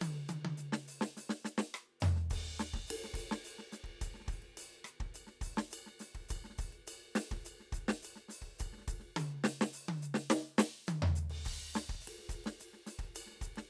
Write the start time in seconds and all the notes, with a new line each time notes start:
0.01 hi-hat pedal, high tom
0.13 snare
0.29 hi-hat pedal, high tom
0.45 high tom
0.57 snare, hi-hat pedal
0.72 snare
0.88 hi-hat pedal
1.01 snare
1.17 snare, hi-hat pedal
1.29 snare
1.45 snare, hi-hat pedal
1.58 snare
1.74 cross-stick, hi-hat pedal
2.00 floor tom, hi-hat pedal
2.16 snare
2.30 kick, hi-hat pedal, ride
2.46 kick
2.59 snare, hi-hat pedal
2.73 kick, snare
2.87 hi-hat pedal, ride
3.04 snare
3.14 kick, hi-hat pedal, ride
3.30 snare, ride
3.44 hi-hat pedal, ride bell
3.58 snare
3.72 snare, hi-hat pedal, ride
3.84 kick, ride
4.01 kick, hi-hat pedal, ride bell
4.14 snare
4.20 snare
4.25 kick, snare
4.29 hi-hat pedal, ride
4.42 snare, ride
4.57 hi-hat pedal, ride bell
4.84 cross-stick, hi-hat pedal
5.00 kick, snare
5.14 hi-hat pedal, ride bell
5.27 snare
5.41 kick, hi-hat pedal, ride
5.57 snare, ride
5.71 hi-hat pedal, ride bell
5.86 snare
5.99 snare, hi-hat pedal, ride
6.15 kick, ride
6.29 kick, hi-hat pedal, ride bell
6.44 snare
6.50 snare
6.56 kick, snare, hi-hat pedal, ride
6.72 ride
6.87 hi-hat pedal, ride bell
7.15 snare, hi-hat pedal, ride
7.31 kick, snare
7.45 hi-hat pedal, ride bell
7.60 snare
7.72 kick, hi-hat pedal, ride
7.88 snare, ride
8.02 hi-hat pedal, ride bell
8.16 snare
8.28 snare, hi-hat pedal, ride
8.42 kick, ride
8.59 kick, hi-hat pedal, ride bell
8.73 snare
8.77 snare
8.81 snare
8.88 kick, hi-hat pedal, ride
9.00 snare
9.16 hi-hat pedal, high tom
9.44 snare, hi-hat pedal
9.61 snare
9.73 hi-hat pedal
9.88 open hi-hat, high tom
10.02 hi-hat pedal
10.14 snare
10.30 snare, hi-hat pedal
10.58 snare, hi-hat pedal
10.87 closed hi-hat, hi-hat pedal, high tom
11.02 floor tom
11.15 hi-hat pedal
11.30 ride
11.45 kick, hi-hat pedal, crash
11.74 snare, hi-hat pedal
11.89 kick, snare
12.01 hi-hat pedal
12.07 ride
12.19 snare
12.29 kick, hi-hat pedal, ride
12.44 snare, ride
12.60 hi-hat pedal, ride
12.73 snare
12.86 snare, hi-hat pedal, ride
12.99 kick, ride
13.15 hi-hat pedal, ride bell
13.26 snare
13.31 snare
13.36 snare
13.41 kick, hi-hat pedal, ride
13.56 snare, ride